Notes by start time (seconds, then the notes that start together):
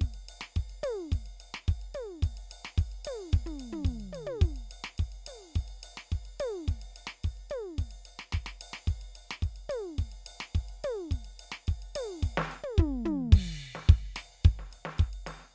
0.01 kick, ride
0.14 ride
0.29 hi-hat pedal, ride
0.41 snare
0.56 kick, ride
0.70 ride
0.83 hi-hat pedal, high tom, ride
1.12 kick, ride
1.26 ride
1.40 hi-hat pedal, ride
1.54 snare
1.68 kick, ride
1.81 ride
1.94 hi-hat pedal, high tom, ride
2.22 kick, ride
2.37 ride
2.43 kick
2.50 hi-hat pedal, ride
2.65 snare
2.78 kick, ride
2.92 ride
3.05 hi-hat pedal, high tom, ride
3.33 kick, ride
3.45 floor tom, ride
3.59 hi-hat pedal, ride
3.72 floor tom
3.85 kick, ride
4.00 ride
4.12 hi-hat pedal, high tom, ride
4.26 high tom
4.41 kick, ride
4.56 ride
4.71 hi-hat pedal, ride
4.84 snare
4.98 kick, ride
5.12 ride
5.27 hi-hat pedal, high tom, ride
5.55 kick, ride
5.68 ride
5.83 hi-hat pedal, ride
5.97 snare
6.12 kick, ride
6.25 ride
6.40 hi-hat pedal, high tom, ride
6.68 kick, ride
6.82 ride
6.96 hi-hat pedal, ride
7.07 snare
7.24 kick, ride
7.37 ride
7.50 hi-hat pedal, high tom, ride
7.78 kick, ride
7.91 ride
8.05 hi-hat pedal, ride
8.19 snare
8.33 kick, snare, ride
8.46 snare, ride
8.61 hi-hat pedal, ride
8.73 snare
8.87 kick, ride
9.01 ride
9.15 hi-hat pedal, ride
9.31 snare
9.42 kick, ride
9.56 ride
9.69 hi-hat pedal, high tom, ride
9.98 kick, ride
10.12 ride
10.26 hi-hat pedal, ride
10.40 snare
10.55 kick, ride
10.69 ride
10.84 hi-hat pedal, high tom, ride
11.11 kick, ride
11.25 ride
11.39 hi-hat pedal, ride
11.52 snare
11.67 kick, ride
11.82 ride
11.95 hi-hat pedal, high tom, ride
12.23 kick, ride
12.38 snare
12.51 hi-hat pedal, ride
12.63 high tom
12.78 kick, floor tom
13.05 floor tom, hi-hat pedal
13.32 kick, crash, ride
13.62 hi-hat pedal, ride
13.75 snare
13.89 kick, ride
14.16 snare, hi-hat pedal, ride
14.44 kick, ride
14.59 snare
14.71 hi-hat pedal, ride
14.85 snare
14.98 kick, ride
15.13 ride
15.27 snare, hi-hat pedal, ride
15.41 snare